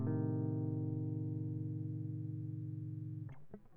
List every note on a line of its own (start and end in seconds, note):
0.00 3.32 A2
0.00 3.36 C3
0.07 3.30 D#3